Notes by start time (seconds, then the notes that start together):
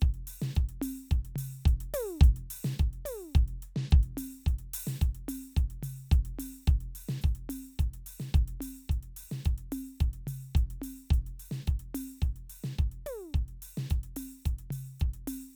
0.01 kick, closed hi-hat, hi-hat pedal
0.15 closed hi-hat
0.28 open hi-hat
0.43 snare
0.56 kick, closed hi-hat, hi-hat pedal
0.70 closed hi-hat
0.83 open hi-hat, high tom
1.10 kick, closed hi-hat, hi-hat pedal
1.26 closed hi-hat
1.37 floor tom, open hi-hat
1.64 kick, hi-hat pedal
1.69 closed hi-hat
1.82 closed hi-hat
1.95 open hi-hat, high tom
2.20 kick, hi-hat pedal
2.25 closed hi-hat
2.38 closed hi-hat
2.52 open hi-hat
2.66 snare
2.76 hi-hat pedal
2.80 kick, closed hi-hat
2.94 closed hi-hat
3.06 open hi-hat, high tom
3.34 kick, closed hi-hat, hi-hat pedal
3.49 closed hi-hat
3.64 open hi-hat
3.77 snare
3.91 kick, closed hi-hat, hi-hat pedal
4.04 closed hi-hat
4.19 open hi-hat, high tom
4.45 kick, hi-hat pedal
4.49 closed hi-hat
4.60 closed hi-hat
4.75 open hi-hat
4.88 snare
4.99 kick, closed hi-hat, hi-hat pedal
5.16 closed hi-hat
5.30 open hi-hat, high tom
5.54 kick, hi-hat pedal
5.59 closed hi-hat
5.71 closed hi-hat
5.84 floor tom, open hi-hat
6.11 kick, closed hi-hat, hi-hat pedal
6.26 closed hi-hat
6.40 open hi-hat, high tom
6.68 kick, closed hi-hat, hi-hat pedal
6.82 closed hi-hat
6.96 open hi-hat
7.10 snare
7.22 kick, hi-hat pedal, open hi-hat
7.36 closed hi-hat
7.51 open hi-hat, high tom
7.77 kick, closed hi-hat, hi-hat pedal
7.95 closed hi-hat
8.08 open hi-hat
8.21 snare
8.33 kick, closed hi-hat, hi-hat pedal
8.49 closed hi-hat
8.62 open hi-hat, high tom
8.88 kick, hi-hat pedal
8.93 closed hi-hat
9.04 closed hi-hat
9.18 open hi-hat
9.23 kick
9.33 snare
9.45 kick, closed hi-hat, hi-hat pedal
9.59 closed hi-hat
9.73 open hi-hat, high tom
9.99 kick, closed hi-hat, hi-hat pedal
10.15 closed hi-hat
10.28 floor tom, open hi-hat
10.56 kick, closed hi-hat, hi-hat pedal
10.72 closed hi-hat
10.83 open hi-hat, high tom
11.11 kick, hi-hat pedal
11.15 closed hi-hat
11.28 closed hi-hat
11.41 open hi-hat
11.53 snare
11.66 kick, closed hi-hat, hi-hat pedal
11.81 closed hi-hat
11.96 open hi-hat, high tom
12.22 kick, closed hi-hat, hi-hat pedal
12.37 closed hi-hat
12.51 open hi-hat
12.65 snare
12.77 closed hi-hat, kick, hi-hat pedal
12.93 closed hi-hat
13.07 open hi-hat, high tom
13.34 kick, closed hi-hat, hi-hat pedal
13.49 closed hi-hat
13.63 open hi-hat
13.79 snare
13.89 kick, closed hi-hat, hi-hat pedal
14.05 closed hi-hat
14.18 open hi-hat, high tom
14.45 kick, closed hi-hat, hi-hat pedal
14.60 closed hi-hat
14.72 floor tom, open hi-hat
15.01 kick, hi-hat pedal, open hi-hat
15.15 closed hi-hat
15.29 open hi-hat, high tom